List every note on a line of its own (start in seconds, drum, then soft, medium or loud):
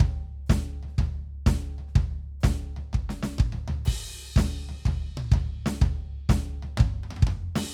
0.01 kick loud
0.01 floor tom loud
0.47 kick loud
0.47 snare loud
0.47 floor tom loud
0.47 hi-hat pedal soft
0.84 floor tom medium
0.89 snare soft
0.94 snare soft
0.99 kick loud
0.99 floor tom loud
1.47 kick loud
1.47 snare loud
1.47 floor tom loud
1.72 snare soft
1.79 floor tom medium
1.88 snare soft
1.94 kick loud
1.94 snare soft
1.94 floor tom loud
2.41 kick loud
2.41 snare loud
2.41 floor tom loud
2.41 hi-hat pedal soft
2.77 floor tom medium
2.94 kick loud
2.94 floor tom medium
3.10 snare medium
3.23 snare loud
3.39 kick loud
3.39 high tom loud
3.53 floor tom medium
3.69 floor tom loud
3.86 kick loud
3.86 crash loud
4.35 kick loud
4.35 snare loud
4.35 floor tom loud
4.35 hi-hat pedal soft
4.70 floor tom medium
4.86 kick loud
4.86 floor tom loud
5.18 high tom loud
5.32 kick loud
5.32 floor tom loud
5.67 snare loud
5.82 kick loud
5.82 floor tom loud
6.30 kick loud
6.30 snare loud
6.30 floor tom loud
6.63 floor tom medium
6.78 kick loud
6.78 floor tom loud
7.04 mid tom medium
7.11 mid tom loud
7.17 mid tom medium
7.23 kick loud
7.28 mid tom loud
7.56 snare loud
7.56 crash loud